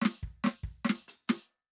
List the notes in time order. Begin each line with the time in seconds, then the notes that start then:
0.02 snare
0.06 snare
0.23 kick
0.44 snare
0.47 snare
0.64 kick
0.85 snare
0.90 snare
1.08 closed hi-hat
1.28 snare, hi-hat pedal